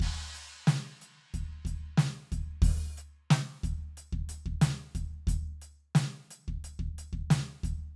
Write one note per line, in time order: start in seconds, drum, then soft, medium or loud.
0.00 kick medium
0.00 crash loud
0.35 percussion medium
0.67 snare loud
0.67 percussion medium
1.02 percussion medium
1.34 kick medium
1.34 percussion medium
1.65 kick medium
1.65 percussion medium
1.98 snare loud
1.98 percussion medium
2.32 kick medium
2.32 percussion medium
2.62 kick loud
2.62 percussion loud
2.98 percussion medium
3.31 snare loud
3.31 percussion medium
3.63 kick medium
3.63 percussion medium
3.97 percussion medium
4.13 kick medium
4.29 percussion loud
4.46 kick medium
4.62 snare loud
4.62 percussion loud
4.95 kick medium
4.95 percussion medium
5.27 kick medium
5.27 percussion loud
5.62 percussion medium
5.95 snare loud
5.95 percussion loud
6.31 percussion medium
6.48 kick medium
6.64 percussion medium
6.79 kick medium
6.98 percussion medium
7.13 kick medium
7.30 snare loud
7.30 percussion loud
7.63 kick medium
7.63 percussion medium